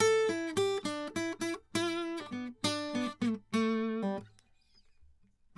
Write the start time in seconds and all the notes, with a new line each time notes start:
0.01 A4
0.29 E4
0.48 D#4
0.58 G4
0.86 D4
1.17 E4
1.42 E4
1.76 E4
2.18 D4
2.33 B3
2.65 D4
2.96 B3
3.22 A3
3.54 A3
4.03 G3